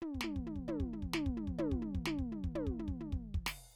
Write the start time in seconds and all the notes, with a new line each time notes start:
0.01 floor tom
0.14 kick
0.21 snare, floor tom
0.36 kick
0.46 floor tom
0.56 kick
0.68 floor tom, high tom
0.80 kick
0.92 floor tom
1.02 kick
1.13 snare, floor tom
1.26 kick
1.36 floor tom
1.47 kick
1.58 floor tom, high tom
1.71 kick
1.81 floor tom
1.95 kick
2.06 snare, floor tom
2.19 kick
2.31 floor tom
2.44 kick
2.54 floor tom, high tom
2.67 kick
2.79 floor tom
2.88 kick
3.00 floor tom
3.12 kick
3.34 kick
3.46 snare, ride
3.70 hi-hat pedal